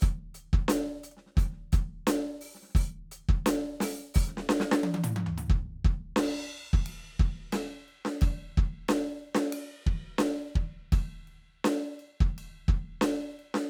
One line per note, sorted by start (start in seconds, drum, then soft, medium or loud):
0.01 open hi-hat loud
0.01 kick loud
0.01 snare soft
0.01 hi-hat pedal soft
0.07 snare soft
0.12 snare soft
0.35 closed hi-hat medium
0.53 kick loud
0.68 closed hi-hat loud
0.68 snare loud
1.04 closed hi-hat medium
1.12 closed hi-hat soft
1.17 snare soft
1.27 snare soft
1.36 open hi-hat medium
1.36 kick loud
1.36 snare soft
1.41 snare soft
1.41 hi-hat pedal soft
1.50 snare soft
1.53 snare soft
1.57 snare soft
1.72 closed hi-hat medium
1.72 kick loud
2.07 open hi-hat loud
2.07 snare loud
2.41 open hi-hat medium
2.47 open hi-hat soft
2.55 snare soft
2.63 snare soft
2.69 snare soft
2.75 open hi-hat loud
2.75 kick loud
2.75 snare soft
2.79 snare soft
3.12 closed hi-hat medium
3.29 kick loud
3.46 closed hi-hat loud
3.46 snare loud
3.81 open hi-hat loud
3.81 snare loud
4.14 open hi-hat loud
4.14 kick loud
4.28 snare soft
4.37 snare medium
4.49 snare loud
4.60 snare loud
4.60 hi-hat pedal soft
4.72 snare loud
4.77 hi-hat pedal soft
4.84 high tom loud
4.94 high tom loud
5.04 mid tom loud
5.16 high tom loud
5.27 floor tom medium
5.38 mid tom medium
5.50 kick loud
5.85 kick loud
6.16 snare loud
6.16 crash loud
6.73 kick loud
6.86 ride loud
7.20 kick loud
7.53 snare loud
7.53 ride bell loud
7.88 ride soft
8.05 snare medium
8.21 kick loud
8.21 ride bell loud
8.58 kick loud
8.89 snare loud
8.89 ride bell medium
9.35 snare loud
9.43 snare soft
9.53 ride loud
9.87 kick loud
10.19 snare loud
10.19 ride bell medium
10.56 kick loud
10.92 kick loud
10.92 ride bell medium
11.28 floor tom soft
11.28 ride soft
11.65 snare loud
11.65 ride bell medium
12.00 ride bell soft
12.21 kick loud
12.38 ride bell medium
12.68 kick loud
13.01 snare loud
13.01 ride bell loud
13.39 ride soft
13.54 snare loud